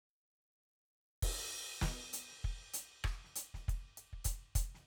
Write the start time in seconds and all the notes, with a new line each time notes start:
1.23 kick, crash
1.51 closed hi-hat
1.82 kick, snare
2.13 closed hi-hat
2.31 snare
2.44 closed hi-hat, kick
2.62 snare
2.74 closed hi-hat
3.04 kick, cross-stick
3.25 snare
3.36 closed hi-hat
3.54 kick, snare
3.68 kick, closed hi-hat
3.97 closed hi-hat
4.13 kick
4.25 closed hi-hat, kick
4.55 closed hi-hat, kick
4.75 snare